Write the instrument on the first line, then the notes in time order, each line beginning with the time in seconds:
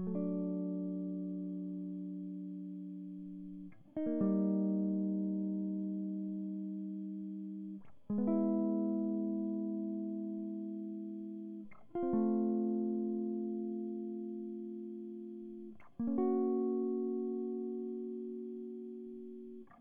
electric guitar
0.00 F#3
0.07 A3
0.15 D4
3.97 D#4
4.07 A#3
4.21 G3
8.10 G#3
8.19 B3
8.28 E4
11.95 F4
12.03 C4
12.14 A3
16.00 A#3
16.07 C#4
16.18 F#4